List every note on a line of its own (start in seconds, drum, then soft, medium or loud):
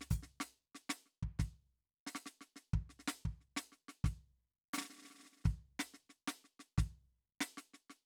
0.01 snare soft
0.11 kick medium
0.11 hi-hat pedal medium
0.23 snare soft
0.40 snare medium
0.75 snare soft
0.89 snare medium
1.06 snare soft
1.23 kick soft
1.39 kick medium
1.39 snare soft
2.07 snare medium
2.15 snare medium
2.26 snare soft
2.41 snare soft
2.56 snare soft
2.73 kick medium
2.89 snare soft
2.99 snare soft
3.08 snare medium
3.25 kick soft
3.41 snare soft
3.57 snare medium
3.72 snare soft
3.88 snare soft
4.04 kick medium
4.04 snare soft
4.73 snare medium
4.73 hi-hat pedal medium
4.78 snare medium
4.81 snare medium
4.84 snare soft
4.90 snare soft
4.93 snare soft
4.96 snare soft
4.98 snare soft
5.02 snare soft
5.05 snare soft
5.07 snare soft
5.10 snare soft
5.15 snare soft
5.18 snare soft
5.20 snare soft
5.23 snare soft
5.25 snare soft
5.30 snare soft
5.33 snare soft
5.37 snare soft
5.44 kick medium
5.44 snare soft
5.79 snare medium
5.94 snare soft
6.09 snare soft
6.28 snare medium
6.44 snare soft
6.59 snare soft
6.78 kick medium
6.78 snare soft
7.41 snare medium
7.57 snare soft
7.74 snare soft
7.90 snare soft